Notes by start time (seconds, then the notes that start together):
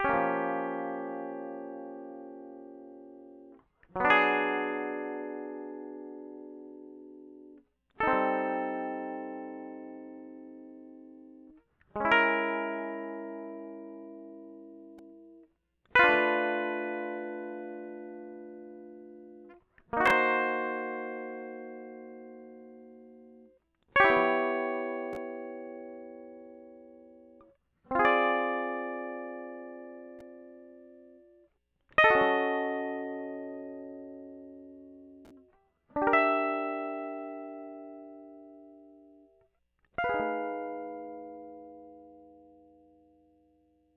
0.00 G4
0.05 C#4
0.10 A#3
0.14 F3
3.97 F#3
4.01 B3
4.05 D4
4.11 G#4
8.01 D#4 A4
8.08 C4
8.14 G3
11.96 G#3
12.01 C#4
12.05 E4
12.12 A#4
15.96 F4 B4
16.04 D4
16.10 A3
19.94 A#3 D#4
20.01 F#4
20.06 C5
23.96 G4 C#5
24.05 E4
24.11 B3
27.92 C4
27.96 F4
28.00 G#4
28.05 D5
31.99 D#5
32.04 A4
32.11 F#4
32.16 C#4
35.97 D4
36.02 G4
36.08 A#4
36.14 E5
39.99 F5
40.04 B4
40.10 G#4
40.15 D#4